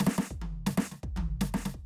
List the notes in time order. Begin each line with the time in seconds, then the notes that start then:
0.00 snare
0.07 snare
0.18 snare
0.31 kick
0.42 high tom
0.67 snare
0.78 snare
0.92 snare
1.04 kick
1.17 floor tom, high tom
1.41 snare
1.54 snare
1.66 snare
1.75 kick